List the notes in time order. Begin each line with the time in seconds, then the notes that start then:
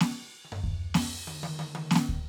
0.01 snare, crash
0.45 high tom
0.53 floor tom
0.64 kick
0.95 snare, crash
1.28 high tom
1.44 high tom
1.60 high tom
1.75 high tom
1.91 snare
1.96 snare
2.10 kick